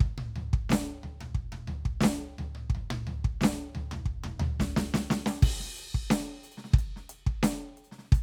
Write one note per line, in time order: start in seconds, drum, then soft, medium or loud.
0.01 kick loud
0.01 floor tom medium
0.18 high tom loud
0.36 floor tom medium
0.54 kick medium
0.70 snare loud
0.72 snare loud
1.04 floor tom medium
1.21 mid tom medium
1.35 kick medium
1.47 kick soft
1.53 mid tom medium
1.68 floor tom medium
1.86 kick medium
2.01 snare loud
2.04 snare loud
2.39 floor tom medium
2.56 high tom medium
2.70 kick medium
2.75 floor tom medium
2.91 high tom loud
3.07 floor tom medium
3.25 kick medium
3.41 snare loud
3.44 snare loud
3.75 floor tom medium
3.92 mid tom medium
4.06 kick medium
4.24 mid tom medium
4.40 floor tom loud
4.60 kick medium
4.60 snare loud
4.75 kick soft
4.75 snare loud
4.94 snare loud
5.11 snare loud
5.27 snare loud
5.43 kick loud
5.43 crash loud
5.60 snare soft
5.66 snare soft
5.77 closed hi-hat medium
5.95 kick medium
5.95 snare soft
6.11 closed hi-hat medium
6.11 snare loud
6.44 closed hi-hat medium
6.52 closed hi-hat soft
6.58 snare soft
6.65 snare soft
6.71 kick loud
6.71 snare soft
6.79 closed hi-hat medium
6.97 snare soft
7.10 closed hi-hat medium
7.27 kick medium
7.43 closed hi-hat loud
7.43 snare loud
7.78 closed hi-hat soft
7.85 closed hi-hat soft
7.92 snare soft
7.99 snare soft
8.05 snare soft
8.13 closed hi-hat medium
8.13 kick loud